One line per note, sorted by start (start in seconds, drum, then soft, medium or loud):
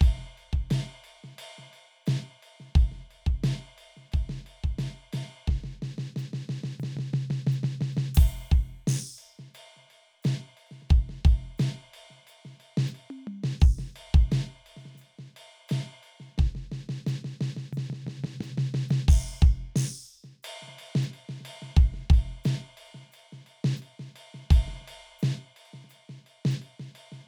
0.01 kick loud
0.01 ride medium
0.18 snare soft
0.37 ride soft
0.53 kick medium
0.70 snare loud
0.70 ride medium
1.04 ride medium
1.24 snare soft
1.38 ride medium
1.58 snare soft
1.73 ride soft
2.06 snare loud
2.06 hi-hat pedal medium
2.06 ride medium
2.43 ride soft
2.60 snare soft
2.75 kick loud
2.75 ride soft
2.92 snare soft
3.11 ride soft
3.26 kick medium
3.44 snare loud
3.44 ride medium
3.78 ride medium
3.97 snare soft
4.12 kick medium
4.12 ride soft
4.29 snare medium
4.46 ride soft
4.64 kick medium
4.79 snare medium
4.79 ride medium
5.13 snare medium
5.13 ride medium
5.48 kick medium
5.48 snare medium
5.64 snare medium
5.82 snare medium
5.98 snare medium
6.16 snare medium
6.16 hi-hat pedal medium
6.33 snare medium
6.49 snare medium
6.64 snare medium
6.79 snare medium
6.79 floor tom medium
6.79 hi-hat pedal medium
6.97 snare medium
6.97 floor tom loud
7.13 snare medium
7.13 floor tom loud
7.30 snare medium
7.30 floor tom loud
7.47 snare medium
7.47 floor tom loud
7.52 hi-hat pedal medium
7.63 snare medium
7.63 floor tom loud
7.81 snare medium
7.81 floor tom loud
7.93 hi-hat pedal soft
7.97 snare medium
7.97 floor tom loud
8.15 open hi-hat loud
8.15 kick loud
8.15 ride medium
8.27 ride soft
8.52 kick loud
8.87 snare loud
8.87 crash loud
9.18 ride soft
9.39 snare soft
9.54 hi-hat pedal medium
9.54 ride medium
9.77 snare soft
9.90 ride soft
10.22 snare loud
10.22 hi-hat pedal medium
10.22 ride medium
10.57 ride soft
10.67 ride soft
10.71 snare soft
10.82 snare soft
10.90 kick loud
10.90 ride soft
11.09 snare soft
11.25 kick loud
11.25 ride soft
11.58 snare loud
11.58 hi-hat pedal medium
11.58 ride medium
11.94 ride medium
12.10 snare soft
12.27 hi-hat pedal medium
12.27 ride soft
12.45 snare soft
12.60 ride soft
12.77 snare loud
12.87 hi-hat pedal medium
12.95 ride soft
13.10 high tom medium
13.27 mid tom loud
13.44 snare loud
13.60 kick loud
13.60 crash medium
13.79 snare medium
13.96 ride medium
14.14 kick loud
14.32 snare loud
14.32 ride medium
14.66 ride soft
14.77 snare soft
14.77 ride soft
14.86 snare soft
14.95 snare soft
14.95 hi-hat pedal medium
15.01 ride soft
15.19 snare soft
15.36 ride medium
15.68 snare loud
15.68 hi-hat pedal soft
15.68 ride medium
16.03 ride soft
16.20 snare soft
16.38 kick medium
16.38 snare medium
16.55 snare soft
16.72 snare medium
16.89 snare medium
17.07 snare loud
17.07 hi-hat pedal medium
17.24 snare medium
17.41 snare loud
17.57 snare medium
17.73 floor tom medium
17.73 hi-hat pedal medium
17.77 snare medium
17.90 snare medium
17.90 floor tom medium
18.07 snare medium
18.07 floor tom loud
18.24 snare medium
18.24 floor tom loud
18.41 snare medium
18.41 floor tom loud
18.41 hi-hat pedal soft
18.58 snare medium
18.58 floor tom loud
18.74 snare loud
18.74 floor tom loud
18.88 snare loud
18.88 floor tom loud
18.88 hi-hat pedal soft
19.08 kick loud
19.08 hi-hat pedal soft
19.08 ride medium
19.08 crash loud
19.42 kick loud
19.76 snare loud
19.76 crash loud
20.24 snare soft
20.43 hi-hat pedal medium
20.43 ride loud
20.62 snare soft
20.68 snare soft
20.79 ride medium
20.86 ride soft
20.95 snare loud
21.02 hi-hat pedal medium
21.13 ride soft
21.29 snare medium
21.41 snare soft
21.45 ride medium
21.53 ride soft
21.62 snare soft
21.77 kick loud
21.77 ride soft
21.94 snare soft
22.10 kick loud
22.10 ride medium
22.44 snare loud
22.44 hi-hat pedal medium
22.44 ride medium
22.77 ride medium
22.85 ride soft
22.94 snare soft
23.12 hi-hat pedal medium
23.12 ride soft
23.19 ride soft
23.33 snare soft
23.46 ride soft
23.64 snare loud
23.76 hi-hat pedal medium
23.82 ride soft
23.99 snare soft
24.16 ride medium
24.34 snare soft
24.51 kick loud
24.51 ride medium
24.57 hi-hat pedal soft
24.68 snare soft
24.81 snare soft
24.88 ride medium
25.19 hi-hat pedal medium
25.19 ride medium
25.23 snare loud
25.56 ride soft
25.65 ride soft
25.74 snare soft
25.84 snare soft
25.89 hi-hat pedal medium
25.89 ride soft
26.09 snare soft
26.26 ride soft
26.45 snare loud
26.51 hi-hat pedal medium
26.62 ride soft
26.80 snare medium
26.95 ride medium
27.12 snare soft